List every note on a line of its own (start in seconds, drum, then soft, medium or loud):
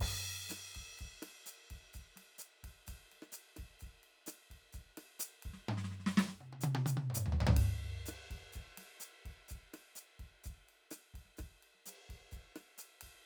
0.01 kick medium
0.01 crash loud
0.49 cross-stick soft
0.49 snare soft
0.49 hi-hat pedal medium
0.49 ride medium
0.75 kick soft
0.75 ride soft
0.97 kick soft
0.97 hi-hat pedal soft
0.97 ride soft
1.06 kick soft
1.06 snare soft
1.22 cross-stick soft
1.22 snare soft
1.22 ride medium
1.46 hi-hat pedal medium
1.46 ride soft
1.71 kick soft
1.71 ride soft
1.94 kick soft
1.94 hi-hat pedal soft
1.94 ride soft
2.00 kick soft
2.16 snare soft
2.16 ride medium
2.39 hi-hat pedal medium
2.39 ride soft
2.64 kick soft
2.64 ride medium
2.87 kick soft
2.87 snare soft
2.87 hi-hat pedal soft
2.87 ride medium
2.93 kick soft
3.12 snare soft
3.12 ride soft
3.23 cross-stick soft
3.32 hi-hat pedal medium
3.32 ride medium
3.57 kick soft
3.57 cross-stick soft
3.57 ride medium
3.64 kick soft
3.80 kick soft
3.80 hi-hat pedal soft
3.80 ride soft
3.88 kick soft
4.04 ride soft
4.27 cross-stick soft
4.27 snare soft
4.27 hi-hat pedal medium
4.27 ride medium
4.51 kick soft
4.51 ride soft
4.73 kick soft
4.73 hi-hat pedal soft
4.73 ride soft
4.80 kick soft
4.98 cross-stick soft
4.98 ride medium
5.20 hi-hat pedal loud
5.20 ride medium
5.43 kick soft
5.43 ride medium
5.51 kick soft
5.51 snare soft
5.69 mid tom loud
5.78 snare medium
5.84 snare soft
5.92 snare soft
6.00 snare soft
6.07 snare medium
6.18 snare loud
6.29 snare soft
6.34 kick soft
6.41 high tom soft
6.53 high tom medium
6.61 hi-hat pedal medium
6.61 high tom loud
6.75 high tom medium
6.86 hi-hat pedal loud
6.86 high tom loud
6.98 high tom medium
7.11 mid tom medium
7.15 hi-hat pedal loud
7.15 mid tom medium
7.26 floor tom medium
7.33 floor tom medium
7.41 floor tom medium
7.47 floor tom loud
7.56 kick medium
7.56 ride loud
8.06 cross-stick medium
8.06 snare soft
8.06 hi-hat pedal medium
8.06 ride soft
8.31 kick soft
8.31 ride soft
8.36 kick soft
8.53 kick soft
8.53 hi-hat pedal soft
8.53 ride soft
8.61 kick soft
8.78 snare soft
8.78 ride medium
9.00 hi-hat pedal medium
9.00 ride soft
9.26 kick soft
9.26 ride soft
9.49 kick soft
9.49 hi-hat pedal medium
9.49 ride soft
9.56 kick soft
9.74 cross-stick soft
9.74 snare soft
9.74 ride medium
9.96 hi-hat pedal medium
9.96 ride soft
10.20 kick soft
10.20 ride soft
10.44 kick soft
10.44 hi-hat pedal soft
10.44 ride soft
10.69 ride soft
10.91 cross-stick soft
10.91 snare soft
10.91 hi-hat pedal medium
10.91 ride medium
11.14 kick soft
11.14 ride soft
11.25 snare soft
11.37 kick soft
11.37 cross-stick soft
11.37 snare soft
11.37 hi-hat pedal soft
11.37 ride medium
11.63 ride soft
11.75 snare soft
11.86 snare soft
11.86 hi-hat pedal medium
11.86 ride soft
12.10 kick soft
12.10 ride soft
12.15 kick soft
12.32 kick soft
12.32 hi-hat pedal soft
12.32 ride soft
12.38 kick soft
12.56 cross-stick soft
12.56 snare soft
12.56 ride medium
12.78 hi-hat pedal medium
12.78 ride medium
13.01 kick soft
13.01 ride medium